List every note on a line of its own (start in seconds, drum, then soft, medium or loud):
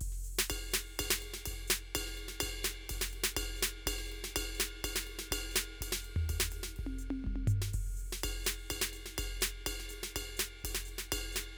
0.01 kick soft
0.01 crash loud
0.08 kick soft
0.12 snare soft
0.24 hi-hat pedal medium
0.39 snare loud
0.50 kick soft
0.50 ride bell loud
0.72 snare loud
0.72 hi-hat pedal medium
0.99 kick soft
0.99 ride bell loud
1.07 kick soft
1.11 snare loud
1.20 hi-hat pedal medium
1.20 ride medium
1.34 snare medium
1.42 hi-hat pedal soft
1.46 kick soft
1.46 ride bell medium
1.54 kick soft
1.68 snare loud
1.68 hi-hat pedal medium
1.95 kick soft
1.95 ride bell loud
2.07 snare soft
2.15 hi-hat pedal medium
2.15 ride soft
2.29 snare medium
2.41 kick soft
2.41 ride bell loud
2.49 kick soft
2.64 snare medium
2.64 hi-hat pedal medium
2.71 snare soft
2.84 hi-hat pedal soft
2.90 kick soft
2.90 ride bell medium
2.97 kick soft
3.02 snare medium
3.10 hi-hat pedal medium
3.10 ride soft
3.24 snare loud
3.37 kick soft
3.37 ride bell loud
3.43 kick soft
3.57 hi-hat pedal medium
3.63 snare loud
3.87 kick soft
3.87 ride bell loud
3.93 kick soft
3.99 snare soft
4.06 hi-hat pedal medium
4.12 ride soft
4.24 snare medium
4.36 kick soft
4.36 ride bell loud
4.55 hi-hat pedal medium
4.60 snare loud
4.78 hi-hat pedal soft
4.84 kick soft
4.84 ride bell loud
4.90 kick soft
4.96 snare medium
5.02 hi-hat pedal medium
5.07 ride soft
5.19 snare medium
5.32 kick soft
5.32 ride bell loud
5.51 hi-hat pedal medium
5.56 snare loud
5.81 kick soft
5.81 ride bell medium
5.87 kick soft
5.93 snare loud
6.02 hi-hat pedal medium
6.02 ride soft
6.16 floor tom loud
6.30 kick soft
6.30 ride bell medium
6.37 kick soft
6.37 snare loud
6.51 hi-hat pedal medium
6.51 ride medium
6.63 snare medium
6.77 kick soft
6.77 ride soft
6.86 kick soft
6.86 high tom medium
6.99 hi-hat pedal medium
7.11 high tom loud
7.24 kick soft
7.24 mid tom medium
7.34 kick soft
7.34 high tom medium
7.48 hi-hat pedal medium
7.48 floor tom loud
7.62 snare medium
7.68 snare soft
7.74 kick soft
7.74 crash medium
7.85 kick soft
7.97 hi-hat pedal medium
8.13 snare medium
8.24 kick soft
8.24 ride bell loud
8.45 snare loud
8.45 hi-hat pedal medium
8.70 kick soft
8.70 ride bell loud
8.82 snare loud
8.93 hi-hat pedal medium
8.93 ride soft
9.06 snare medium
9.18 kick soft
9.18 ride bell loud
9.26 kick soft
9.41 snare loud
9.41 hi-hat pedal medium
9.67 kick soft
9.67 ride bell loud
9.72 kick soft
9.80 snare soft
9.89 hi-hat pedal medium
9.89 ride medium
10.03 snare medium
10.16 kick soft
10.16 ride bell loud
10.22 kick soft
10.37 snare loud
10.37 hi-hat pedal medium
10.59 hi-hat pedal soft
10.65 kick soft
10.65 ride bell medium
10.70 kick soft
10.75 snare medium
10.85 hi-hat pedal medium
10.85 ride soft
10.98 snare medium
11.12 kick soft
11.12 ride bell loud
11.18 kick soft
11.33 snare medium
11.33 hi-hat pedal medium